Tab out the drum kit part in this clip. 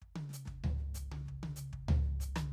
Hi-hat    |--p---p---p---p-|
Snare     |--gg-gg-g-gg-ggr|
High tom  |-o-----o-o-----o|
Floor tom |----o-------o---|
Kick      |g--g--g-g--g--g-|